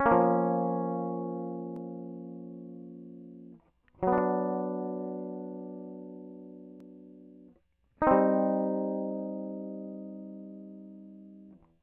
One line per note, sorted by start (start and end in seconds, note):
0.00 3.56 C#4
0.06 3.59 A#3
0.12 3.62 F3
4.03 7.54 F#3
4.07 7.56 B3
4.12 7.52 D4
4.18 4.24 F#4
8.02 11.56 D#4
8.07 11.59 C4
8.11 11.59 G3